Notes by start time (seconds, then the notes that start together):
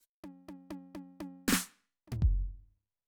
0.00 hi-hat pedal
0.24 high tom
0.49 high tom
0.71 high tom
0.95 high tom
1.20 closed hi-hat, high tom
1.48 snare
1.52 snare
2.08 high tom
2.12 floor tom
2.22 kick